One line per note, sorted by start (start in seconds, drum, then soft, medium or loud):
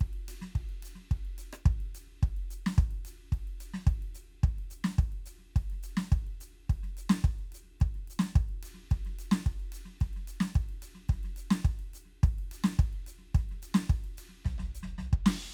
0.01 kick medium
0.01 ride medium
0.14 ride soft
0.29 hi-hat pedal medium
0.29 ride medium
0.42 snare medium
0.56 kick medium
0.56 ride soft
0.70 ride soft
0.83 hi-hat pedal medium
0.83 ride medium
0.96 snare soft
1.12 kick medium
1.12 ride soft
1.25 ride soft
1.39 hi-hat pedal medium
1.39 ride medium
1.53 cross-stick medium
1.66 kick loud
1.66 ride soft
1.81 ride soft
1.95 hi-hat pedal medium
1.95 ride medium
2.07 snare soft
2.23 kick loud
2.23 ride soft
2.37 ride soft
2.51 hi-hat pedal medium
2.51 ride medium
2.67 snare medium
2.78 kick loud
2.78 ride soft
2.91 ride soft
3.06 hi-hat pedal medium
3.06 ride medium
3.33 kick medium
3.33 ride medium
3.48 ride soft
3.61 hi-hat pedal medium
3.61 ride medium
3.74 snare medium
3.87 kick loud
3.87 ride medium
4.03 ride soft
4.15 hi-hat pedal medium
4.15 ride medium
4.31 snare soft
4.44 kick loud
4.44 snare soft
4.44 ride soft
4.56 snare soft
4.56 ride soft
4.71 hi-hat pedal medium
4.71 ride medium
4.85 snare medium
4.99 kick loud
4.99 ride soft
5.13 ride soft
5.26 hi-hat pedal medium
5.26 ride medium
5.39 snare soft
5.56 kick medium
5.56 snare soft
5.56 ride medium
5.71 snare soft
5.71 ride soft
5.83 hi-hat pedal medium
5.83 ride medium
5.97 snare medium
6.12 kick loud
6.12 ride soft
6.27 ride soft
6.41 hi-hat pedal medium
6.41 ride medium
6.53 snare soft
6.70 kick medium
6.70 snare soft
6.70 ride medium
6.84 snare soft
6.84 ride soft
6.98 hi-hat pedal medium
6.98 ride medium
7.10 snare loud
7.24 kick loud
7.24 ride soft
7.39 ride soft
7.53 hi-hat pedal medium
7.53 ride medium
7.64 snare soft
7.81 kick loud
7.81 snare soft
7.81 ride soft
7.95 snare soft
7.95 ride soft
8.08 hi-hat pedal medium
8.08 ride medium
8.20 snare loud
8.36 kick loud
8.36 hi-hat pedal soft
8.36 ride soft
8.49 ride soft
8.63 hi-hat pedal medium
8.63 ride medium
8.75 snare soft
8.91 kick medium
8.91 snare soft
8.91 hi-hat pedal soft
8.91 ride soft
9.05 snare soft
9.05 ride soft
9.19 hi-hat pedal medium
9.19 ride medium
9.32 snare loud
9.45 kick medium
9.45 hi-hat pedal soft
9.45 ride soft
9.60 ride soft
9.73 hi-hat pedal medium
9.73 ride medium
9.86 snare soft
10.00 kick medium
10.00 snare soft
10.00 hi-hat pedal soft
10.00 ride medium
10.14 snare soft
10.14 ride soft
10.28 hi-hat pedal medium
10.28 ride medium
10.41 snare loud
10.54 kick loud
10.54 hi-hat pedal soft
10.54 ride medium
10.66 snare soft
10.66 ride soft
10.83 hi-hat pedal medium
10.83 ride medium
10.95 snare soft
11.09 kick medium
11.09 snare soft
11.09 ride medium
11.24 snare soft
11.24 ride soft
11.37 hi-hat pedal medium
11.37 ride medium
11.51 snare loud
11.65 kick loud
11.65 ride soft
11.80 ride soft
11.94 hi-hat pedal medium
11.94 ride medium
12.06 snare soft
12.24 kick loud
12.24 snare soft
12.24 hi-hat pedal soft
12.24 ride medium
12.39 snare soft
12.39 ride soft
12.52 hi-hat pedal medium
12.52 ride medium
12.64 snare loud
12.79 kick loud
12.79 hi-hat pedal soft
12.79 ride medium
12.93 ride soft
13.07 hi-hat pedal medium
13.07 ride medium
13.19 snare soft
13.35 kick loud
13.35 snare soft
13.35 hi-hat pedal soft
13.35 ride medium
13.50 snare soft
13.50 ride soft
13.63 hi-hat pedal medium
13.63 ride medium
13.75 snare loud
13.89 kick loud
13.89 hi-hat pedal soft
13.89 ride medium
14.05 ride soft
14.18 hi-hat pedal medium
14.18 ride medium
14.29 snare soft
14.45 kick medium
14.45 snare medium
14.45 floor tom medium
14.45 hi-hat pedal soft
14.59 snare medium
14.59 floor tom medium
14.75 hi-hat pedal medium
14.83 snare medium
14.83 floor tom medium
14.99 snare medium
14.99 floor tom medium
15.13 kick loud
15.26 snare loud
15.26 ride loud
15.49 snare soft